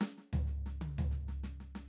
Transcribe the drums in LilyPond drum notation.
\new DrumStaff \drummode { \time 4/4 \tempo 4 = 125 \tuplet 3/2 { <hhp sn>8 sn8 tomfh8 sn8 sn8 tommh8 tomfh8 sn8 sn8 sn8 sn8 sn8 } | }